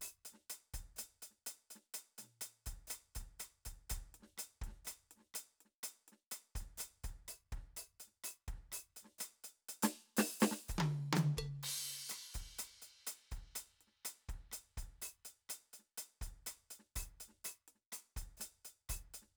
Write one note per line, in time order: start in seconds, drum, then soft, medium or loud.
0.01 open hi-hat medium
0.01 cross-stick soft
0.01 snare soft
0.25 closed hi-hat soft
0.32 snare soft
0.33 snare soft
0.50 closed hi-hat medium
0.50 cross-stick soft
0.74 closed hi-hat medium
0.74 kick soft
0.96 closed hi-hat medium
0.96 snare soft
0.96 hi-hat pedal soft
1.22 closed hi-hat soft
1.31 snare soft
1.46 closed hi-hat medium
1.46 cross-stick soft
1.70 closed hi-hat soft
1.75 snare soft
1.94 closed hi-hat medium
1.94 cross-stick soft
2.18 closed hi-hat soft
2.18 snare soft
2.18 mid tom soft
2.23 snare soft
2.41 closed hi-hat medium
2.41 cross-stick soft
2.66 closed hi-hat medium
2.66 kick soft
2.87 closed hi-hat medium
2.87 cross-stick soft
2.87 snare soft
2.87 hi-hat pedal medium
3.15 closed hi-hat medium
3.15 kick soft
3.19 snare soft
3.39 closed hi-hat medium
3.39 cross-stick soft
3.39 hi-hat pedal soft
3.65 closed hi-hat medium
3.65 kick soft
3.90 open hi-hat medium
3.90 kick soft
3.90 cross-stick soft
3.96 kick soft
4.14 closed hi-hat soft
4.20 snare soft
4.22 snare soft
4.37 closed hi-hat medium
4.37 cross-stick soft
4.37 snare soft
4.61 kick soft
4.61 closed hi-hat soft
4.66 snare soft
4.68 snare soft
4.85 closed hi-hat medium
4.85 cross-stick soft
4.85 snare soft
4.85 hi-hat pedal soft
5.11 closed hi-hat soft
5.16 snare soft
5.19 snare soft
5.34 closed hi-hat medium
5.34 cross-stick soft
5.60 closed hi-hat soft
5.65 snare soft
5.83 closed hi-hat medium
5.83 cross-stick soft
6.08 closed hi-hat soft
6.12 snare soft
6.31 closed hi-hat medium
6.31 cross-stick soft
6.55 open hi-hat soft
6.55 kick soft
6.61 snare soft
6.77 closed hi-hat medium
6.77 cross-stick soft
6.77 hi-hat pedal medium
7.04 closed hi-hat soft
7.04 kick soft
7.28 open hi-hat medium
7.28 cross-stick soft
7.28 hi-hat pedal soft
7.52 kick soft
7.52 snare soft
7.52 closed hi-hat soft
7.57 snare soft
7.76 open hi-hat medium
7.76 cross-stick soft
7.76 hi-hat pedal soft
8.00 closed hi-hat soft
8.07 snare soft
8.24 open hi-hat medium
8.24 cross-stick soft
8.24 hi-hat pedal soft
8.48 kick soft
8.48 closed hi-hat soft
8.56 snare soft
8.71 open hi-hat medium
8.71 cross-stick soft
8.71 snare soft
8.71 hi-hat pedal soft
8.96 closed hi-hat soft
9.02 snare soft
9.04 snare soft
9.18 closed hi-hat medium
9.18 cross-stick soft
9.18 hi-hat pedal soft
9.44 closed hi-hat soft
9.69 closed hi-hat medium
9.82 closed hi-hat loud
9.82 snare medium
10.17 open hi-hat loud
10.17 snare medium
10.40 open hi-hat medium
10.40 snare loud
10.51 snare soft
10.68 kick soft
10.68 hi-hat pedal medium
10.68 crash soft
10.78 high tom loud
10.80 high tom medium
10.84 high tom medium
11.13 hi-hat pedal medium
11.13 high tom loud
11.17 high tom loud
11.37 kick soft
11.37 percussion medium
11.63 crash loud
12.09 closed hi-hat medium
12.09 cross-stick medium
12.34 closed hi-hat soft
12.34 kick soft
12.58 closed hi-hat medium
12.58 cross-stick soft
12.82 closed hi-hat soft
13.07 closed hi-hat medium
13.07 cross-stick soft
13.31 closed hi-hat soft
13.31 kick soft
13.55 closed hi-hat medium
13.55 cross-stick soft
13.55 snare soft
13.81 closed hi-hat soft
13.87 snare soft
14.05 closed hi-hat medium
14.05 cross-stick soft
14.29 kick soft
14.29 closed hi-hat soft
14.52 closed hi-hat medium
14.52 cross-stick soft
14.52 hi-hat pedal soft
14.77 closed hi-hat soft
14.77 kick soft
15.02 open hi-hat medium
15.02 cross-stick soft
15.25 closed hi-hat soft
15.49 closed hi-hat medium
15.49 cross-stick soft
15.49 snare soft
15.73 closed hi-hat soft
15.79 snare soft
15.97 closed hi-hat medium
15.97 cross-stick soft
16.21 closed hi-hat soft
16.21 kick soft
16.46 closed hi-hat medium
16.46 cross-stick soft
16.70 closed hi-hat soft
16.79 snare soft
16.95 open hi-hat medium
16.95 kick soft
16.95 cross-stick soft
17.20 closed hi-hat soft
17.27 snare soft
17.44 open hi-hat medium
17.44 cross-stick soft
17.68 closed hi-hat soft
17.75 snare soft
17.92 open hi-hat medium
17.92 cross-stick soft
18.16 closed hi-hat medium
18.16 kick soft
18.37 closed hi-hat medium
18.37 snare soft
18.37 hi-hat pedal soft
18.65 closed hi-hat soft
18.89 open hi-hat medium
18.89 kick soft
18.89 cross-stick soft
18.89 snare soft
18.89 hi-hat pedal soft
19.14 closed hi-hat soft
19.22 snare soft